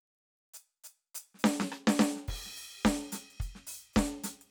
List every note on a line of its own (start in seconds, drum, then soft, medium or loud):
0.54 hi-hat pedal medium
0.84 hi-hat pedal medium
1.15 hi-hat pedal loud
1.34 snare soft
1.39 hi-hat pedal medium
1.44 snare loud
1.60 snare loud
1.72 cross-stick medium
1.87 snare loud
1.87 hi-hat pedal soft
1.99 snare loud
2.16 snare soft
2.28 kick medium
2.28 crash loud
2.46 snare soft
2.56 open hi-hat medium
2.84 kick soft
2.84 snare loud
2.84 hi-hat pedal soft
3.12 closed hi-hat loud
3.12 snare medium
3.30 closed hi-hat soft
3.40 closed hi-hat soft
3.40 kick medium
3.55 snare soft
3.67 open hi-hat loud
3.93 kick medium
3.93 snare loud
3.93 hi-hat pedal soft
4.24 closed hi-hat loud
4.24 snare medium
4.41 closed hi-hat soft